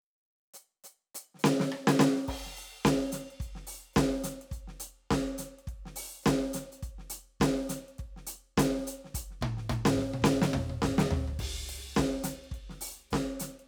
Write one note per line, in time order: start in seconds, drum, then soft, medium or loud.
0.54 hi-hat pedal medium
0.84 hi-hat pedal medium
1.15 hi-hat pedal loud
1.34 snare soft
1.39 hi-hat pedal medium
1.44 snare loud
1.60 snare loud
1.72 cross-stick medium
1.87 snare loud
1.87 hi-hat pedal soft
1.99 snare loud
2.16 snare soft
2.28 kick medium
2.28 crash loud
2.46 snare soft
2.56 open hi-hat medium
2.84 kick soft
2.84 snare loud
2.84 hi-hat pedal soft
3.12 closed hi-hat loud
3.12 snare medium
3.30 closed hi-hat soft
3.40 closed hi-hat soft
3.40 kick medium
3.55 snare soft
3.67 open hi-hat loud
3.93 kick medium
3.93 snare loud
3.93 hi-hat pedal soft
4.24 closed hi-hat loud
4.24 snare medium
4.41 closed hi-hat soft
4.51 closed hi-hat soft
4.51 kick medium
4.68 snare soft
4.80 closed hi-hat loud
5.11 kick medium
5.11 snare loud
5.38 closed hi-hat loud
5.38 snare soft
5.59 closed hi-hat soft
5.67 kick medium
5.85 snare soft
5.96 open hi-hat loud
6.23 kick soft
6.23 snare loud
6.23 hi-hat pedal medium
6.53 closed hi-hat loud
6.53 snare medium
6.72 closed hi-hat soft
6.83 closed hi-hat soft
6.83 kick medium
6.98 snare soft
7.10 closed hi-hat loud
7.40 kick soft
7.40 snare loud
7.69 closed hi-hat loud
7.69 snare medium
7.88 closed hi-hat soft
7.99 kick soft
8.16 snare soft
8.27 closed hi-hat loud
8.57 closed hi-hat loud
8.57 kick medium
8.57 snare loud
8.78 snare soft
8.87 closed hi-hat loud
9.04 snare soft
9.14 closed hi-hat loud
9.14 kick medium
9.31 snare soft
9.41 kick soft
9.41 high tom loud
9.57 snare soft
9.69 kick medium
9.69 hi-hat pedal medium
9.69 high tom loud
9.85 snare loud
9.96 kick soft
9.96 snare soft
10.14 high tom loud
10.22 kick soft
10.22 snare loud
10.42 snare loud
10.53 kick soft
10.53 mid tom loud
10.70 high tom medium
10.82 kick soft
10.82 snare loud
10.98 snare loud
11.11 kick soft
11.11 floor tom loud
11.28 floor tom medium
11.39 kick medium
11.39 ride loud
11.69 open hi-hat medium
11.95 kick medium
11.95 snare loud
11.95 hi-hat pedal soft
12.24 closed hi-hat loud
12.24 snare medium
12.44 closed hi-hat soft
12.51 kick medium
12.51 closed hi-hat soft
12.69 snare soft
12.81 open hi-hat loud
13.10 kick soft
13.10 snare medium
13.10 hi-hat pedal medium
13.40 closed hi-hat loud
13.40 snare medium
13.59 closed hi-hat soft